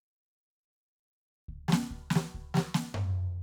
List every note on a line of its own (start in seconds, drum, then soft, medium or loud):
1.49 kick soft
1.69 snare loud
1.73 snare loud
1.92 kick soft
2.11 snare loud
2.16 snare loud
2.35 kick soft
2.55 snare loud
2.58 snare loud
2.75 snare loud
2.95 floor tom loud